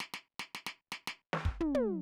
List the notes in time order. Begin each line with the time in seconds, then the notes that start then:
0.00 snare
0.14 snare
0.39 snare
0.55 snare
0.66 snare
0.92 snare
1.07 snare
1.33 snare
1.45 kick
1.60 floor tom
1.74 high tom